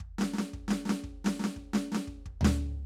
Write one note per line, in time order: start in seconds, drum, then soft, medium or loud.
0.00 kick soft
0.18 snare medium
0.21 snare loud
0.33 snare medium
0.38 snare medium
0.53 kick soft
0.68 snare medium
0.71 snare medium
0.85 snare medium
0.89 snare loud
1.04 kick soft
1.24 snare medium
1.26 snare loud
1.39 snare medium
1.44 snare medium
1.56 kick soft
1.73 snare medium
1.92 snare medium
1.95 snare medium
2.07 kick soft
2.26 kick soft
2.41 snare loud
2.41 floor tom loud